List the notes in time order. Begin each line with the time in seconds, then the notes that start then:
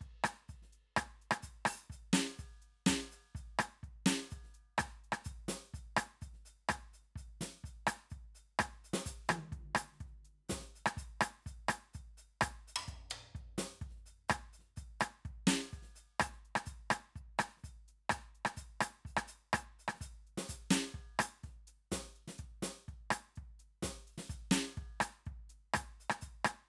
0.01 kick, closed hi-hat
0.24 closed hi-hat, cross-stick
0.48 closed hi-hat, kick
0.62 snare
0.73 closed hi-hat
0.97 closed hi-hat, kick, cross-stick
1.22 closed hi-hat
1.31 cross-stick
1.42 closed hi-hat, kick
1.65 open hi-hat, cross-stick
1.89 closed hi-hat, kick, hi-hat pedal
2.13 closed hi-hat, snare
2.38 closed hi-hat, kick
2.62 closed hi-hat
2.86 closed hi-hat, kick, snare
2.92 snare
3.11 closed hi-hat
3.23 snare
3.35 closed hi-hat, kick
3.59 closed hi-hat, cross-stick
3.83 kick, closed hi-hat
4.06 closed hi-hat, snare
4.30 closed hi-hat, kick
4.44 snare
4.48 snare
4.54 closed hi-hat
4.78 closed hi-hat, kick, cross-stick
5.04 closed hi-hat
5.12 cross-stick
5.24 closed hi-hat, kick
5.48 closed hi-hat, snare
5.74 closed hi-hat, kick
5.97 closed hi-hat, cross-stick
6.21 closed hi-hat, kick
6.34 snare
6.40 snare
6.45 closed hi-hat
6.69 closed hi-hat, kick, cross-stick
6.93 closed hi-hat
7.02 snare
7.16 closed hi-hat, kick
7.41 closed hi-hat, snare
7.64 closed hi-hat, kick
7.87 closed hi-hat, cross-stick
8.10 closed hi-hat, kick
8.35 closed hi-hat
8.59 closed hi-hat, kick, cross-stick
8.72 snare
8.84 closed hi-hat
8.94 snare
9.05 closed hi-hat, kick
9.29 cross-stick, high tom
9.52 kick, closed hi-hat
9.75 closed hi-hat, cross-stick
9.93 snare
10.00 kick, closed hi-hat
10.05 snare
10.25 closed hi-hat
10.49 closed hi-hat, kick, snare
10.60 snare
10.75 closed hi-hat
10.86 cross-stick
10.97 closed hi-hat, kick
11.21 closed hi-hat, cross-stick
11.42 closed hi-hat, kick, hi-hat pedal
11.68 closed hi-hat, cross-stick
11.93 closed hi-hat, kick
12.17 closed hi-hat
12.41 closed hi-hat, kick, cross-stick
12.67 closed hi-hat
12.76 floor tom
12.88 kick, closed hi-hat
13.10 closed hi-hat, mid tom
13.35 kick, closed hi-hat
13.58 closed hi-hat, snare
13.81 kick, closed hi-hat
13.90 snare
13.96 snare
14.06 closed hi-hat
14.29 closed hi-hat, kick, cross-stick
14.53 closed hi-hat
14.59 snare
14.63 snare
14.76 closed hi-hat, kick
15.00 closed hi-hat, cross-stick
15.25 kick, closed hi-hat
15.47 closed hi-hat, snare
15.53 snare
15.72 closed hi-hat, kick
15.83 snare
15.87 snare
15.95 closed hi-hat
16.20 open hi-hat, kick, cross-stick
16.31 snare
16.45 closed hi-hat
16.55 cross-stick
16.66 closed hi-hat, kick
16.90 closed hi-hat, cross-stick
17.16 open hi-hat, kick
17.39 closed hi-hat, cross-stick
17.57 snare
17.64 closed hi-hat, kick
17.88 closed hi-hat
18.10 open hi-hat, kick, cross-stick
18.35 closed hi-hat
18.45 cross-stick
18.57 closed hi-hat, kick
18.81 closed hi-hat, cross-stick
19.05 open hi-hat, kick
19.17 cross-stick
19.27 closed hi-hat
19.53 open hi-hat, kick, cross-stick
19.79 closed hi-hat
19.88 cross-stick
19.94 snare
20.01 closed hi-hat, kick
20.27 open hi-hat
20.38 snare
20.49 closed hi-hat, kick
20.70 closed hi-hat, snare
20.94 kick
21.19 closed hi-hat, cross-stick
21.43 kick, snare, closed hi-hat
21.50 snare
21.67 closed hi-hat
21.91 closed hi-hat, kick, snare
22.03 snare
22.15 closed hi-hat
22.28 snare
22.38 kick, closed hi-hat
22.63 closed hi-hat, snare
22.88 kick, closed hi-hat
23.11 closed hi-hat, cross-stick
23.36 kick, closed hi-hat
23.59 closed hi-hat
23.83 closed hi-hat, kick, snare
24.07 open hi-hat
24.18 snare
24.29 closed hi-hat, kick
24.51 closed hi-hat, snare
24.73 snare, closed hi-hat
24.77 kick
25.00 closed hi-hat, cross-stick
25.26 kick, closed hi-hat
25.50 closed hi-hat
25.74 closed hi-hat, kick, cross-stick
26.00 closed hi-hat
26.10 cross-stick
26.21 closed hi-hat, kick
26.45 closed hi-hat, cross-stick